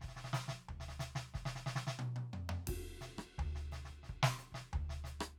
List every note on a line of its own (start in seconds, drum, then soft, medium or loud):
0.01 kick soft
0.01 snare soft
0.08 snare soft
0.14 snare soft
0.16 snare soft
0.33 snare medium
0.33 hi-hat pedal medium
0.48 kick soft
0.48 snare medium
0.69 kick soft
0.69 floor tom medium
0.80 snare soft
0.88 snare soft
0.99 snare medium
0.99 hi-hat pedal medium
1.15 snare medium
1.34 kick soft
1.34 snare soft
1.43 kick soft
1.43 snare medium
1.66 snare medium
1.76 snare medium
1.87 snare medium
1.99 high tom loud
2.16 high tom medium
2.33 mid tom medium
2.49 mid tom medium
2.67 kick medium
2.67 ride loud
3.01 snare soft
3.01 hi-hat pedal soft
3.18 kick soft
3.18 cross-stick medium
3.38 kick soft
3.38 floor tom loud
3.55 snare soft
3.72 snare soft
3.72 hi-hat pedal soft
3.85 snare soft
3.90 kick soft
4.03 snare soft
4.09 kick soft
4.23 snare loud
4.38 snare soft
4.38 hi-hat pedal soft
4.52 kick soft
4.52 snare medium
4.73 kick soft
4.73 floor tom medium
4.89 snare soft
5.04 snare soft
5.04 hi-hat pedal medium
5.19 kick soft
5.19 cross-stick medium